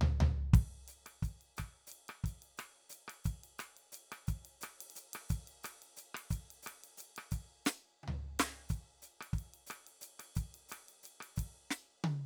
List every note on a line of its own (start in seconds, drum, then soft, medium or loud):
0.01 floor tom loud
0.20 floor tom loud
0.53 kick loud
0.53 ride medium
0.88 hi-hat pedal medium
0.88 ride soft
1.06 cross-stick soft
1.06 ride soft
1.22 kick medium
1.22 hi-hat pedal soft
1.22 ride soft
1.41 ride soft
1.57 kick soft
1.57 cross-stick medium
1.57 hi-hat pedal soft
1.57 ride soft
1.87 hi-hat pedal medium
1.92 ride soft
2.08 cross-stick medium
2.08 ride soft
2.24 kick medium
2.24 hi-hat pedal soft
2.24 ride soft
2.42 ride soft
2.57 cross-stick medium
2.57 hi-hat pedal soft
2.57 ride soft
2.89 hi-hat pedal medium
2.89 ride soft
3.08 cross-stick medium
3.08 ride soft
3.24 kick medium
3.24 hi-hat pedal medium
3.24 ride soft
3.43 ride soft
3.58 cross-stick medium
3.58 hi-hat pedal medium
3.58 ride soft
3.77 ride soft
3.92 hi-hat pedal medium
3.92 ride soft
4.12 cross-stick medium
4.12 ride soft
4.27 kick medium
4.27 hi-hat pedal medium
4.27 ride soft
4.45 ride soft
4.61 cross-stick medium
4.61 hi-hat pedal medium
4.61 ride medium
4.81 ride medium
4.90 ride soft
4.95 hi-hat pedal medium
4.95 ride soft
5.13 cross-stick medium
5.13 ride medium
5.29 kick medium
5.29 hi-hat pedal medium
5.29 ride soft
5.47 ride soft
5.63 cross-stick medium
5.63 hi-hat pedal medium
5.63 ride medium
5.82 ride soft
5.97 hi-hat pedal medium
5.97 ride soft
6.14 cross-stick medium
6.14 ride medium
6.30 kick medium
6.30 hi-hat pedal medium
6.30 ride soft
6.50 ride soft
6.63 cross-stick medium
6.63 hi-hat pedal medium
6.67 ride medium
6.84 ride soft
6.97 hi-hat pedal medium
6.97 ride soft
7.16 cross-stick medium
7.16 ride soft
7.31 kick medium
7.31 hi-hat pedal medium
7.31 ride soft
7.65 snare loud
7.65 hi-hat pedal medium
8.03 high tom soft
8.08 floor tom medium
8.39 snare loud
8.39 ride medium
8.69 kick medium
8.69 hi-hat pedal medium
8.74 ride soft
9.02 hi-hat pedal medium
9.02 ride soft
9.21 cross-stick medium
9.21 ride soft
9.33 kick medium
9.33 hi-hat pedal soft
9.38 ride soft
9.54 ride soft
9.66 cross-stick medium
9.66 hi-hat pedal medium
9.71 ride soft
9.87 ride soft
10.01 hi-hat pedal medium
10.01 ride soft
10.19 cross-stick soft
10.19 ride soft
10.35 kick medium
10.35 hi-hat pedal medium
10.35 ride soft
10.54 ride soft
10.69 cross-stick medium
10.69 hi-hat pedal medium
10.69 ride medium
10.88 ride soft
11.03 hi-hat pedal medium
11.03 ride soft
11.20 cross-stick medium
11.20 ride soft
11.36 kick medium
11.36 hi-hat pedal medium
11.36 ride medium
11.70 snare medium
12.04 high tom loud